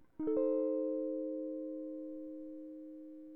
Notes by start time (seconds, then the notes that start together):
0.20 D#4
0.28 A4
0.37 C5
1.72 A4